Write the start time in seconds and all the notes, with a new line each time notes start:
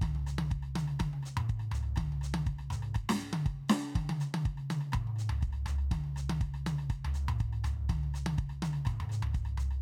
0.01 kick, cross-stick, hi-hat pedal, high tom
0.15 high tom
0.19 high tom
0.27 cross-stick, hi-hat pedal
0.38 high tom
0.50 kick, cross-stick, hi-hat pedal
0.63 cross-stick
0.76 hi-hat pedal, high tom
0.88 cross-stick
0.99 kick, cross-stick, hi-hat pedal, high tom
1.13 high tom
1.23 cross-stick, hi-hat pedal
1.37 mid tom
1.49 kick, hi-hat pedal
1.59 cross-stick
1.71 floor tom, hi-hat pedal
1.83 cross-stick
1.96 kick, cross-stick, hi-hat pedal, high tom
2.12 high tom
2.21 cross-stick, hi-hat pedal
2.34 high tom
2.46 kick, cross-stick, hi-hat pedal
2.59 cross-stick
2.70 hi-hat pedal, mid tom
2.82 cross-stick
2.94 kick, cross-stick, hi-hat pedal
3.09 snare
3.18 cross-stick, hi-hat pedal
3.33 high tom
3.46 kick, cross-stick
3.68 snare, hi-hat pedal
3.92 kick, cross-stick, hi-hat pedal, high tom
4.09 high tom
4.20 cross-stick, hi-hat pedal
4.34 high tom
4.44 kick, cross-stick, hi-hat pedal
4.57 cross-stick
4.70 hi-hat pedal, high tom
4.81 cross-stick
4.92 kick, cross-stick, hi-hat pedal, mid tom
5.07 mid tom
5.16 cross-stick, hi-hat pedal
5.29 cross-stick, floor tom
5.41 kick, cross-stick, hi-hat pedal
5.53 cross-stick
5.66 floor tom, hi-hat pedal
5.78 cross-stick
5.91 kick, cross-stick, hi-hat pedal, high tom
6.04 high tom
6.08 high tom
6.16 cross-stick, hi-hat pedal
6.30 high tom
6.40 kick, cross-stick, hi-hat pedal
6.54 cross-stick
6.66 hi-hat pedal, high tom
6.78 cross-stick
6.90 kick, cross-stick, hi-hat pedal
7.05 floor tom
7.14 cross-stick, hi-hat pedal
7.28 mid tom
7.38 kick, cross-stick, hi-hat pedal
7.53 cross-stick
7.64 cross-stick, floor tom, hi-hat pedal
7.89 kick, cross-stick, hi-hat pedal, high tom
8.03 high tom
8.14 cross-stick, hi-hat pedal
8.26 high tom
8.38 kick, cross-stick, hi-hat pedal
8.49 cross-stick
8.62 hi-hat pedal, high tom
8.73 cross-stick
8.85 kick, cross-stick, hi-hat pedal, mid tom
9.00 mid tom
9.09 cross-stick, hi-hat pedal
9.22 floor tom
9.33 kick, cross-stick, hi-hat pedal
9.45 cross-stick
9.57 floor tom, hi-hat pedal
9.71 cross-stick